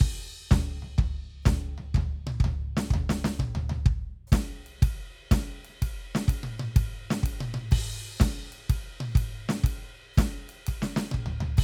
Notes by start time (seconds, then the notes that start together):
0.01 kick
0.51 kick, snare, floor tom
0.82 floor tom
0.98 kick, floor tom
1.43 kick, snare, floor tom, hi-hat pedal
1.78 floor tom
1.95 kick, floor tom
2.27 high tom
2.40 kick
2.44 floor tom
2.77 snare
2.86 hi-hat pedal
2.91 kick, floor tom
3.10 snare
3.25 snare
3.34 hi-hat pedal
3.40 kick, high tom
3.55 floor tom
3.70 floor tom
3.86 kick
4.27 hi-hat pedal
4.32 kick, snare, ride
4.67 ride
4.78 snare
4.82 kick, snare, ride
5.31 kick, snare, ride
5.65 ride
5.69 snare
5.73 snare
5.82 kick, ride
6.15 snare
6.28 kick, ride
6.43 high tom
6.60 high tom
6.76 kick, ride
7.11 snare
7.18 hi-hat pedal
7.23 kick, ride
7.41 high tom
7.54 high tom
7.71 kick, crash
8.16 snare, hi-hat pedal
8.21 kick, ride
8.53 ride
8.70 kick, ride
9.01 high tom
9.09 hi-hat pedal
9.15 kick, ride
9.49 snare
9.64 kick, ride
10.14 kick, hi-hat pedal
10.19 snare, ride
10.49 ride
10.67 kick, ride
10.82 snare
10.96 snare
11.06 hi-hat pedal
11.12 kick, high tom
11.26 floor tom
11.41 floor tom
11.57 kick, crash